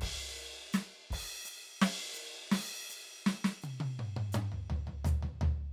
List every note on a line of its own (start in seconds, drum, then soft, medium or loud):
0.01 kick medium
0.01 ride loud
0.73 snare loud
0.73 hi-hat pedal medium
1.10 kick medium
1.10 crash loud
1.45 hi-hat pedal medium
1.82 snare loud
1.82 ride loud
2.13 hi-hat pedal medium
2.52 snare loud
2.52 crash loud
2.89 hi-hat pedal medium
3.26 snare loud
3.44 snare loud
3.62 hi-hat pedal soft
3.62 high tom medium
3.80 high tom loud
3.99 mid tom medium
4.17 mid tom loud
4.32 hi-hat pedal medium
4.32 mid tom loud
4.52 floor tom medium
4.70 floor tom loud
4.87 floor tom medium
5.05 floor tom loud
5.05 hi-hat pedal medium
5.23 floor tom medium
5.41 floor tom loud